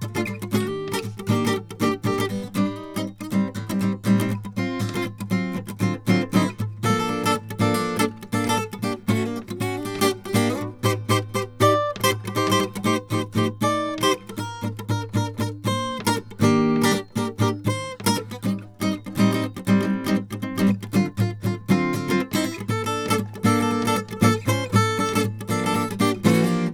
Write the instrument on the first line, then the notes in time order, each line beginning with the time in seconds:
acoustic guitar
0.04 F4
0.17 D4 F4
0.53 D3 F#4
0.69 D#3 G4
0.96 G4
1.29 D#3 A#3 D4 G4
1.47 D4 G4
1.81 D#3 A3 D4 G4
2.05 D#3 A#3 D4 G4
2.20 D4 G4
2.31 G3 B3
2.57 G3 C4 D4
2.78 D#4
2.99 G3 C4 D#4
3.22 D#4
3.33 G3 C4 D#4
3.56 E2 C4
3.71 C4 D#4
3.83 G3 C4 D#4
3.93 G3
4.05 A2 G3 C4 D#4
4.20 G3 C4 D#4
4.59 C4 F4
4.81 D3 C4 F4
4.98 C4 F4
5.32 F#3 C4 F4
5.55 D3 F#3
5.81 D3 F#3 C4 F4
6.08 D3 F#3 C4 F4
6.34 D3 F#3 C4 D#4 E4
6.60 D3
6.84 F3 A#3 A4
7.00 A4
7.10 D4 A4
7.28 A#3 D4 A4
7.61 F3 A#3 D4 A4
7.76 A#3 D4
8.01 A#3 D4 A4
8.34 A#3 D4 A4
8.49 D4 A4
8.59 A4
8.84 A#3 D4 G4
9.09 A3 C#4
9.22 D4
9.28 A#3
9.62 C#4 F#4
9.73 F#4
9.79 D4
9.87 D4 G4
10.03 A#3 C#4 G4
10.36 D4 G4
10.63 F#4
10.85 D#4 G4 C5
11.11 D#4 G4 C5
11.20 D4
11.36 G4 C5
11.62 D#4 G4 D5
12.05 D#4 G4 C5
12.26 C5
12.37 D#4 G4 C5
12.47 G4
12.52 D#4 G4
12.61 B4
12.85 A3 D#4 G4 C5
13.12 F3 A3 D#4 G4 C5
13.35 F3 A3 D#4 G4
13.39 C5
13.62 A3 D#4 A4 D5
14.02 D#4 G4 C5
14.40 A#4
14.90 D4 A#4
15.16 D4 A#4
15.40 D4 A#4
15.66 A#3 D4 C5
16.08 D4 A#4
16.42 D#3 A#3 D4 G4
16.83 D4 G4 A#4
16.94 D4 G4
17.17 A#3 D4 G4 A#4
17.40 D#3 A#3 D4 G4 A#4
17.66 D#3 A3 D4 C5
18.08 D4 A#4
18.45 G3 C4 D#4
18.84 C4 D#4
19.09 C4
19.17 A2 G3 C4 D#4
19.35 C4 D#4
19.69 A2 G3 C4
19.83 G3 C4
20.08 C4
20.12 G3
20.44 C4
20.53 C4
20.62 G3 C4
20.94 D3 C4 F4
21.18 D3 C4 F4
21.44 D3 C4 F4
21.70 D3 C4 F4
21.95 D3 C4 F4
22.11 C4 F4
22.34 C4 D#4 E4
22.47 E4
22.70 A#3 A4
22.84 A4
22.89 D4
23.13 A#3 D4 A4
23.45 A#3 D4 A4
23.72 A4
23.82 A4
23.88 A#3 D4 A4
24.22 F3 A#3 D4 A4
24.47 G#3 C#4 F4 C5
24.74 F3 A#3 D4 A4
24.99 D4 A4
25.18 A#3 D4 A4
25.49 F3 A#3 D4 A4
25.65 D4 A4
25.75 A#3 D4 A4
26.01 A#3 D4 G4
26.26 E3 A3 C4 F#4
26.37 D4
26.45 F3 A#3
26.49 G4